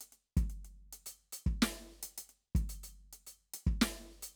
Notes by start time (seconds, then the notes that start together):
0.01 closed hi-hat
0.13 closed hi-hat
0.37 kick, closed hi-hat
0.51 closed hi-hat
0.65 closed hi-hat
0.93 closed hi-hat
1.07 closed hi-hat
1.33 closed hi-hat
1.47 kick
1.63 snare
1.75 closed hi-hat
2.04 closed hi-hat
2.19 closed hi-hat
2.30 closed hi-hat
2.56 kick, closed hi-hat
2.70 closed hi-hat
2.84 closed hi-hat
3.14 closed hi-hat
3.27 closed hi-hat
3.54 closed hi-hat
3.67 kick
3.82 snare
4.23 closed hi-hat